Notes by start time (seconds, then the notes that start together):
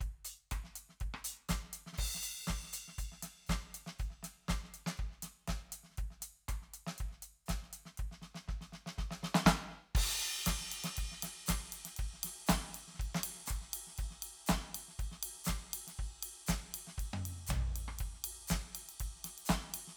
0.01 kick, closed hi-hat
0.25 open hi-hat
0.52 kick, cross-stick, closed hi-hat
0.64 snare
0.67 snare
0.76 closed hi-hat
0.89 snare
1.01 kick, closed hi-hat
1.14 cross-stick
1.25 closed hi-hat
1.49 closed hi-hat, kick, snare
1.64 snare
1.73 closed hi-hat
1.87 snare
1.93 snare
1.97 kick, snare, crash
2.15 snare
2.23 closed hi-hat
2.48 kick, snare, closed hi-hat
2.64 snare
2.73 closed hi-hat
2.88 snare
2.99 closed hi-hat, kick
3.12 snare
3.23 snare, open hi-hat
3.47 kick, snare, closed hi-hat, hi-hat pedal
3.66 snare
3.75 closed hi-hat
3.87 snare
3.99 closed hi-hat, kick
4.11 snare
4.23 snare, closed hi-hat
4.49 closed hi-hat, kick, snare
4.64 snare
4.74 closed hi-hat
4.87 snare
4.98 kick, closed hi-hat
5.12 snare
5.23 snare, closed hi-hat
5.48 kick, snare, closed hi-hat
5.72 closed hi-hat
5.84 snare
5.88 snare
5.90 snare
5.98 kick, closed hi-hat
6.11 snare
6.21 snare, closed hi-hat
6.49 kick, cross-stick, closed hi-hat
6.62 snare
6.74 closed hi-hat
6.87 snare
6.98 kick, closed hi-hat
7.12 snare
7.23 open hi-hat
7.46 kick, snare, closed hi-hat, hi-hat pedal
7.63 snare
7.73 closed hi-hat
7.86 snare
7.98 kick, closed hi-hat
8.12 snare
8.22 snare
8.35 snare
8.48 kick, snare
8.61 snare
8.73 snare
8.87 snare
8.98 kick, snare
9.11 snare
9.23 snare
9.35 snare
9.46 kick, snare
9.95 kick, crash, ride
10.20 ride
10.45 kick, snare, hi-hat pedal, ride
10.61 snare
10.72 ride
10.84 snare, ride
10.97 kick, ride
11.12 snare
11.23 snare, ride
11.47 kick, snare, hi-hat pedal, ride
11.59 snare
11.73 ride
11.85 snare, ride
11.97 kick, ride
12.14 snare
12.24 snare, ride
12.47 kick, snare, hi-hat pedal, ride
12.64 snare
12.75 ride
12.88 snare
12.95 snare
13.00 kick, ride
13.15 snare
13.24 ride
13.47 cross-stick, hi-hat pedal, ride
13.51 kick
13.62 snare
13.74 ride
13.87 snare
13.98 kick, ride
14.11 snare
14.23 ride
14.47 snare, hi-hat pedal, ride
14.51 kick
14.75 ride
14.88 snare
14.99 kick, ride
15.12 snare
15.23 ride
15.45 snare, hi-hat pedal, ride
15.49 kick
15.74 ride
15.88 snare, ride
15.99 kick
16.23 ride
16.47 kick, snare, hi-hat pedal, ride
16.74 ride
16.88 snare
16.98 kick, ride
17.14 high tom
17.26 ride
17.47 kick, floor tom, hi-hat pedal
17.76 ride
17.88 cross-stick
17.99 kick, ride
18.14 snare
18.24 ride
18.48 kick, snare, hi-hat pedal, ride
18.75 ride
18.84 snare
18.89 ride
19.00 kick, ride
19.16 snare
19.25 snare, ride
19.38 ride
19.46 snare, hi-hat pedal
19.50 kick, ride
19.65 snare
19.74 ride
19.88 snare